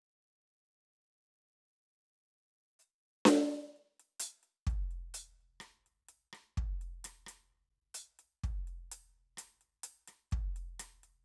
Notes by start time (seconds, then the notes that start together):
2.79 hi-hat pedal
3.25 snare
3.34 snare
3.76 closed hi-hat
3.99 closed hi-hat
4.20 closed hi-hat
4.43 closed hi-hat
4.66 kick, closed hi-hat
4.91 closed hi-hat
5.14 closed hi-hat
5.40 closed hi-hat
5.60 cross-stick, closed hi-hat
5.86 closed hi-hat
6.08 closed hi-hat
6.33 cross-stick, closed hi-hat
6.57 kick
6.81 closed hi-hat
7.04 cross-stick, closed hi-hat
7.26 cross-stick, closed hi-hat
7.94 closed hi-hat
8.19 closed hi-hat
8.43 kick, closed hi-hat
8.67 closed hi-hat
8.91 closed hi-hat
9.37 cross-stick, closed hi-hat
9.61 closed hi-hat
9.83 closed hi-hat
10.07 cross-stick, closed hi-hat
10.31 kick, closed hi-hat
10.56 closed hi-hat
10.79 cross-stick, closed hi-hat
11.03 closed hi-hat